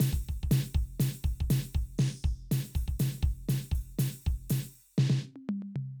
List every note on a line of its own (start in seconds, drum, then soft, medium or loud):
0.01 open hi-hat loud
0.01 snare loud
0.13 kick medium
0.22 open hi-hat soft
0.29 kick soft
0.43 kick soft
0.51 open hi-hat medium
0.51 snare loud
0.75 kick medium
1.00 open hi-hat loud
1.00 snare loud
1.24 open hi-hat soft
1.24 kick medium
1.40 kick medium
1.50 open hi-hat medium
1.50 snare loud
1.75 kick medium
1.98 snare loud
1.98 crash medium
2.24 kick medium
2.24 open hi-hat soft
2.51 open hi-hat medium
2.51 snare loud
2.65 snare soft
2.70 snare soft
2.75 open hi-hat soft
2.75 kick medium
2.88 kick soft
2.99 open hi-hat medium
2.99 snare loud
3.06 snare soft
3.14 snare soft
3.18 snare soft
3.21 kick medium
3.21 snare soft
3.49 open hi-hat medium
3.49 snare loud
3.54 snare soft
3.71 open hi-hat soft
3.71 kick medium
3.99 open hi-hat loud
3.99 snare loud
4.21 open hi-hat soft
4.26 kick medium
4.50 open hi-hat loud
4.50 snare loud
4.75 open hi-hat soft
4.98 snare loud
5.10 snare loud
5.23 high tom soft
5.36 high tom medium
5.49 mid tom loud
5.62 mid tom medium
5.76 floor tom loud